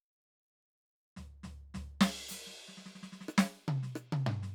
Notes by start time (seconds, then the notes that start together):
1.16 snare, floor tom
1.43 snare, floor tom
1.74 snare, floor tom
2.01 snare, ride
2.28 snare, hi-hat pedal
2.47 snare
2.68 snare
2.77 snare
2.85 snare
2.95 snare
3.03 snare
3.12 snare
3.20 snare
3.28 cross-stick
3.38 snare
3.68 high tom
3.83 snare
3.95 cross-stick
4.12 high tom
4.26 mid tom
4.43 snare